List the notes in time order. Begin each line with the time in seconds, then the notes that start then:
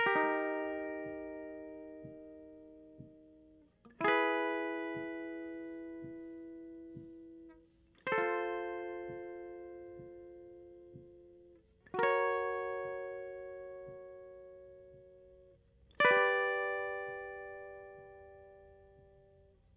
0.00 A#4
0.07 G4
0.16 D#4
4.01 E4 G#4
4.09 B4
8.07 C5
8.13 A4
8.19 F4
11.95 F#4
12.00 A#4
12.04 C#5
16.01 D5
16.06 B4
16.12 G4